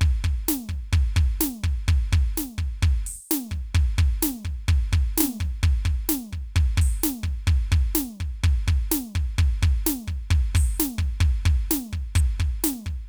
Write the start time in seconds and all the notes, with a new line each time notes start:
0.01 kick
0.24 kick
0.48 snare
0.64 snare
0.69 kick
0.93 kick
1.16 kick
1.41 snare
1.56 snare
1.64 kick
1.88 kick
2.12 kick
2.37 snare
2.54 kick, snare
2.82 kick
3.06 open hi-hat
3.29 snare, hi-hat pedal
3.39 snare
3.47 snare
3.51 kick
3.75 kick
3.98 kick
4.22 snare
4.29 snare
4.45 kick, snare
4.68 kick
4.93 kick
5.18 snare
5.20 snare
5.40 kick
5.63 kick
5.85 kick
6.09 snare
6.33 kick
6.56 kick
6.77 kick
6.81 open hi-hat
7.02 snare, hi-hat pedal
7.19 kick, snare
7.47 kick
7.72 kick
7.95 snare
8.12 snare
8.20 kick
8.44 kick
8.68 kick
8.91 snare
9.09 snare
9.15 kick
9.38 kick
9.62 kick
9.86 snare
10.02 snare
10.08 kick
10.30 kick
10.55 open hi-hat, kick
10.77 snare, hi-hat pedal
10.98 kick
11.20 kick
11.45 kick
11.71 snare
11.79 snare
11.93 kick
12.15 closed hi-hat, kick
12.40 kick
12.64 closed hi-hat, snare
12.73 snare
12.86 kick